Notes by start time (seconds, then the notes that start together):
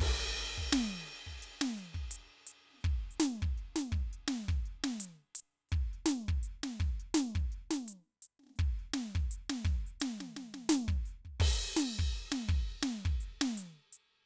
0.01 kick, crash, ride
0.58 kick
0.73 snare
1.27 kick
1.43 closed hi-hat
1.62 snare
1.79 closed hi-hat
1.95 kick, closed hi-hat
2.12 open hi-hat
2.47 open hi-hat
2.71 snare
2.75 snare
2.81 kick, hi-hat pedal
3.03 closed hi-hat
3.11 closed hi-hat
3.21 snare
3.43 kick
3.58 closed hi-hat
3.76 snare
3.93 kick, closed hi-hat
4.14 closed hi-hat
4.29 snare
4.49 kick, closed hi-hat
4.66 closed hi-hat
4.85 snare
5.01 open hi-hat
5.36 open hi-hat
5.70 kick, hi-hat pedal
5.77 closed hi-hat
5.94 closed hi-hat
6.07 snare
6.29 kick, closed hi-hat
6.44 closed hi-hat
6.64 snare
6.81 kick, closed hi-hat
7.00 closed hi-hat
7.15 snare
7.36 kick, closed hi-hat
7.53 closed hi-hat
7.71 snare
7.89 open hi-hat
8.23 open hi-hat
8.40 snare
8.44 snare
8.47 snare
8.50 snare
8.55 snare, hi-hat pedal
8.60 kick, closed hi-hat
8.80 closed hi-hat
8.94 snare
9.16 kick, closed hi-hat
9.32 closed hi-hat
9.50 snare
9.65 kick, closed hi-hat
9.87 closed hi-hat
10.01 closed hi-hat, snare
10.21 snare
10.37 snare
10.55 snare
10.70 snare
10.89 kick
11.06 hi-hat pedal
11.26 kick
11.41 kick, crash
11.77 snare
12.00 kick, closed hi-hat
12.16 closed hi-hat
12.33 snare
12.49 kick, closed hi-hat
12.71 closed hi-hat
12.83 snare
13.06 kick, closed hi-hat
13.21 closed hi-hat
13.42 snare
13.58 open hi-hat
13.93 open hi-hat